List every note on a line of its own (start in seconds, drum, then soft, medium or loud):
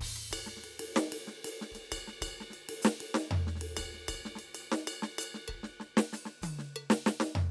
0.01 kick soft
0.01 hi-hat pedal medium
0.01 crash loud
0.16 cross-stick soft
0.31 kick soft
0.31 ride bell loud
0.47 snare soft
0.57 snare soft
0.64 ride medium
0.80 ride loud
0.96 snare loud
1.13 ride loud
1.28 snare soft
1.45 hi-hat pedal loud
1.45 ride loud
1.62 snare medium
1.72 kick soft
1.72 snare soft
1.72 ride bell medium
1.91 kick soft
1.91 hi-hat pedal soft
1.91 ride bell loud
2.08 snare soft
2.22 kick soft
2.22 ride bell loud
2.28 kick soft
2.41 snare soft
2.50 snare soft
2.50 ride bell medium
2.69 ride loud
2.82 snare loud
2.82 hi-hat pedal loud
3.01 ride loud
3.15 snare loud
3.31 floor tom loud
3.47 snare soft
3.56 snare soft
3.56 hi-hat pedal soft
3.62 ride loud
3.77 kick soft
3.77 snare soft
3.77 ride bell loud
3.94 snare soft
4.09 kick soft
4.09 ride bell loud
4.15 kick soft
4.26 snare soft
4.36 snare soft
4.36 ride bell medium
4.55 ride bell loud
4.72 snare loud
4.88 ride bell loud
5.03 snare medium
5.19 hi-hat pedal loud
5.19 ride bell loud
5.35 snare soft
5.48 kick soft
5.48 percussion medium
5.55 kick soft
5.59 kick soft
5.64 snare medium
5.80 snare soft
5.97 snare loud
6.13 snare medium
6.13 hi-hat pedal medium
6.26 snare soft
6.42 kick soft
6.42 hi-hat pedal medium
6.42 open hi-hat soft
6.42 high tom loud
6.59 snare soft
6.76 percussion loud
6.90 snare loud
7.07 snare loud
7.21 snare loud
7.36 floor tom loud